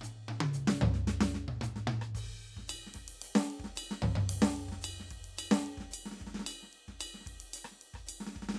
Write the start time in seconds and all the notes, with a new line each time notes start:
0.01 hi-hat pedal, mid tom
0.28 mid tom
0.40 high tom
0.53 floor tom, hi-hat pedal
0.67 snare
0.81 floor tom
0.94 snare
1.07 snare, hi-hat pedal
1.21 snare
1.34 snare
1.48 mid tom
1.61 hi-hat pedal, mid tom
1.76 snare
1.87 mid tom
2.01 cross-stick
2.15 kick, hi-hat pedal, crash
2.26 kick
2.57 kick, snare
2.62 kick
2.68 hi-hat pedal, ride bell
2.86 snare
2.94 kick, snare, ride
3.08 ride
3.22 hi-hat pedal, ride
3.35 snare
3.50 ride
3.59 kick
3.64 snare
3.76 hi-hat pedal, ride bell
3.91 snare
4.02 kick, floor tom
4.15 floor tom
4.29 hi-hat pedal, ride
4.42 snare
4.56 ride
4.68 kick, snare
4.81 hi-hat pedal, ride bell
5.00 snare
5.09 kick, cross-stick, ride
5.14 snare
5.24 ride
5.37 hi-hat pedal, ride bell
5.51 snare
5.66 ride
5.77 kick, snare
5.91 hi-hat pedal, ride bell
6.06 snare
6.11 snare
6.16 snare
6.19 kick, snare
6.26 kick, snare
6.32 snare
6.34 snare
6.39 snare
6.46 hi-hat pedal, ride bell
6.63 snare
6.73 ride
6.88 kick, snare
7.00 hi-hat pedal, ride bell
7.14 snare
7.20 snare
7.25 kick, snare, ride
7.33 snare
7.36 snare
7.40 ride
7.53 hi-hat pedal, ride bell
7.64 cross-stick
7.71 snare
7.81 ride
7.94 kick, cross-stick
7.99 kick
8.07 hi-hat pedal, ride bell
8.20 snare
8.27 snare
8.32 snare
8.35 kick, snare
8.42 snare
8.49 snare
8.54 snare